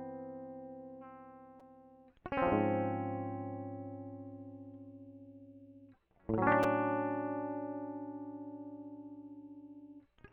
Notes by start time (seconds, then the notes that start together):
2.32 C#4
2.37 C4
2.43 F3
2.54 G#2
6.31 A2
6.38 F#3 C#4
6.47 D4